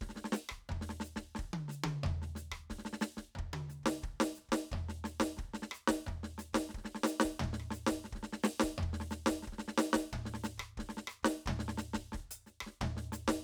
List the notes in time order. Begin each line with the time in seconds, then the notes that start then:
0.01 kick, snare
0.09 snare
0.15 snare
0.24 snare
0.32 snare, hi-hat pedal
0.49 kick, cross-stick
0.69 kick, floor tom
0.81 snare
0.89 snare
1.00 snare
1.04 hi-hat pedal
1.16 kick, snare
1.35 kick, snare
1.53 high tom
1.68 snare, hi-hat pedal
1.84 kick, high tom
2.03 kick, floor tom
2.22 snare
2.35 snare, hi-hat pedal
2.51 kick, cross-stick
2.70 kick, snare
2.78 snare
2.85 snare
2.93 snare
3.01 snare, hi-hat pedal
3.17 kick, snare
3.35 kick, floor tom
3.53 high tom
3.69 snare, hi-hat pedal
3.83 kick, snare
4.02 kick, snare
4.20 snare
4.35 snare, hi-hat pedal
4.49 kick, snare
4.71 kick, floor tom
4.89 snare
5.04 snare, hi-hat pedal
5.20 kick, snare
5.37 kick, snare
5.47 snare
5.54 snare
5.62 snare
5.71 cross-stick, hi-hat pedal
5.88 kick, snare
6.06 kick, floor tom
6.23 snare
6.38 snare, hi-hat pedal
6.53 kick, snare
6.69 snare
6.74 kick, snare
6.84 snare
6.95 snare
7.04 snare, hi-hat pedal
7.20 snare
7.25 kick
7.39 floor tom
7.44 kick
7.53 snare
7.60 cross-stick
7.71 snare, hi-hat pedal
7.87 kick, snare
8.04 snare
8.12 kick, snare
8.23 snare
8.33 snare
8.43 snare, hi-hat pedal
8.60 kick, snare
8.78 floor tom
8.83 kick
8.93 snare
9.00 snare
9.11 snare, hi-hat pedal
9.26 kick, snare
9.43 snare
9.47 kick
9.52 snare
9.58 snare
9.68 snare
9.78 snare, hi-hat pedal
9.93 kick, snare
10.13 kick, floor tom
10.25 snare
10.34 snare
10.44 snare, hi-hat pedal
10.58 kick, cross-stick
10.77 kick, snare
10.89 snare
10.97 snare
11.07 cross-stick, hi-hat pedal
11.23 kick, snare
11.46 kick, floor tom
11.59 snare
11.68 snare
11.78 snare, hi-hat pedal
11.94 kick, snare
12.12 kick, snare
12.31 open hi-hat
12.46 snare, hi-hat pedal
12.61 kick, cross-stick
12.66 snare
12.81 kick, floor tom
12.97 snare
13.12 snare, hi-hat pedal
13.27 kick, snare